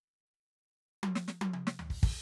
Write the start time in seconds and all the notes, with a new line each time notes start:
1.03 high tom
1.15 snare
1.28 snare
1.41 high tom
1.53 mid tom
1.67 snare
1.79 floor tom
1.90 kick, crash
2.03 kick, crash